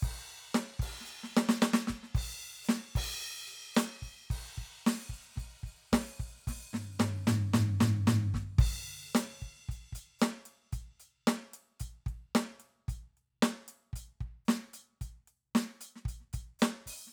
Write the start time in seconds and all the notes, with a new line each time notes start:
0.01 kick, hi-hat pedal, crash
0.55 snare
0.80 kick, crash
1.01 snare
1.06 hi-hat pedal
1.24 snare
1.37 snare
1.49 snare
1.61 snare, hi-hat pedal
1.74 snare
1.88 kick, snare
2.03 snare
2.15 kick, crash
2.65 hi-hat pedal
2.69 snare
2.96 kick, crash
3.21 hi-hat pedal
3.47 closed hi-hat
3.75 closed hi-hat, snare, hi-hat pedal
4.03 open hi-hat, kick
4.31 kick, crash
4.56 kick, open hi-hat
4.87 open hi-hat, snare
5.10 open hi-hat, kick
5.36 open hi-hat, kick, snare
5.64 open hi-hat, kick
5.93 open hi-hat, kick, snare
6.16 snare
6.20 open hi-hat, kick
6.48 open hi-hat, kick, snare
6.74 snare, floor tom
7.00 snare, floor tom
7.27 snare, floor tom
7.54 snare, floor tom
7.81 snare, floor tom
8.08 snare, floor tom
8.34 kick, snare
8.59 kick, crash
8.66 hi-hat pedal
8.82 closed hi-hat
9.15 closed hi-hat, snare
9.41 closed hi-hat, kick
9.69 closed hi-hat, kick
9.93 closed hi-hat, kick
10.20 snare, hi-hat pedal
10.46 closed hi-hat
10.73 closed hi-hat, kick
11.00 closed hi-hat
11.28 snare
11.54 closed hi-hat
11.80 closed hi-hat, kick
12.07 kick, closed hi-hat
12.35 snare
12.60 closed hi-hat
12.89 closed hi-hat, kick
13.18 closed hi-hat
13.43 snare
13.69 closed hi-hat
13.94 closed hi-hat, kick
14.21 kick, closed hi-hat
14.46 snare, hi-hat pedal
14.74 closed hi-hat
15.02 closed hi-hat, kick
15.28 closed hi-hat
15.55 snare
15.81 closed hi-hat
15.96 snare
16.06 closed hi-hat, kick
16.21 snare
16.33 open hi-hat, kick
16.60 snare, hi-hat pedal
16.87 open hi-hat, kick
17.07 snare